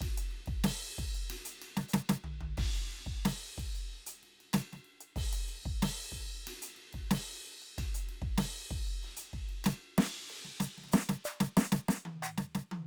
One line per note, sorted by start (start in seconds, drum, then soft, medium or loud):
0.01 kick medium
0.01 ride loud
0.18 closed hi-hat loud
0.31 ride soft
0.46 kick soft
0.46 ride medium
0.64 snare loud
0.64 crash loud
0.99 kick medium
0.99 ride bell medium
1.15 closed hi-hat medium
1.30 ride loud
1.45 closed hi-hat loud
1.62 ride bell loud
1.77 snare medium
1.89 hi-hat pedal medium
1.94 snare loud
2.09 snare loud
2.24 floor tom medium
2.41 floor tom medium
2.58 kick medium
2.58 ride loud
2.75 closed hi-hat medium
2.91 ride soft
3.06 kick soft
3.06 ride bell soft
3.25 snare loud
3.25 crash loud
3.58 kick medium
3.58 ride bell medium
3.75 closed hi-hat medium
3.92 ride soft
4.07 closed hi-hat loud
4.23 ride medium
4.41 ride bell soft
4.53 snare loud
4.53 ride bell loud
4.73 snare soft
4.85 ride soft
5.01 closed hi-hat medium
5.16 kick medium
5.16 crash loud
5.33 closed hi-hat medium
5.49 ride bell medium
5.64 kick soft
5.64 floor tom soft
5.64 ride soft
5.83 snare loud
5.83 crash loud
6.12 kick soft
6.12 ride medium
6.16 cross-stick soft
6.16 floor tom soft
6.31 closed hi-hat soft
6.47 ride loud
6.62 closed hi-hat loud
6.77 ride soft
6.93 kick soft
6.93 ride medium
7.11 snare loud
7.11 crash loud
7.47 ride soft
7.62 closed hi-hat soft
7.78 kick medium
7.78 ride bell loud
7.95 closed hi-hat loud
8.09 ride medium
8.22 kick soft
8.38 snare loud
8.38 crash loud
8.71 kick medium
8.71 ride medium
8.87 closed hi-hat soft
9.03 ride medium
9.17 closed hi-hat loud
9.33 kick soft
9.33 ride soft
9.49 ride soft
9.65 snare loud
9.65 ride bell loud
9.98 snare loud
9.98 ride loud
10.29 crash medium
10.45 snare soft
10.60 snare medium
10.60 hi-hat pedal loud
10.78 snare soft
10.84 snare soft
10.89 snare soft
10.89 hi-hat pedal loud
10.94 snare loud
11.09 snare loud
11.25 percussion loud
11.25 hi-hat pedal loud
11.41 snare loud
11.57 snare loud
11.57 hi-hat pedal loud
11.72 snare loud
11.89 snare loud
11.89 hi-hat pedal loud
12.06 high tom loud
12.23 percussion loud
12.23 hi-hat pedal loud
12.38 snare medium
12.55 snare medium
12.72 high tom loud